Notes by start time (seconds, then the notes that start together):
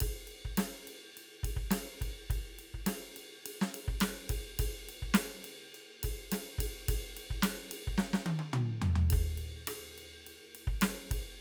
0.00 kick, ride
0.27 ride
0.45 kick
0.57 snare, ride
0.87 ride
1.17 ride
1.43 kick, ride
1.56 kick
1.71 snare, ride
2.01 kick, ride
2.30 kick, ride
2.59 ride
2.74 kick
2.82 kick
2.86 snare, ride
3.16 ride
3.46 ride
3.61 snare
3.74 ride
3.88 kick
4.00 snare, ride
4.29 kick, ride
4.59 kick, ride
4.89 ride
5.02 kick
5.10 kick, snare
5.15 ride
5.44 ride
5.74 ride bell
6.03 kick, ride
6.32 snare, ride
6.58 kick, ride
6.88 kick, ride
7.17 ride
7.30 kick
7.42 snare, ride
7.71 ride
7.87 kick
7.98 snare
8.13 snare
8.26 open hi-hat, high tom
8.39 high tom
8.53 mid tom
8.82 floor tom
8.95 floor tom
9.10 kick, ride
9.38 ride
9.67 cross-stick, ride
9.98 ride
10.27 ride
10.55 ride
10.67 kick
10.81 snare, ride
11.11 kick, ride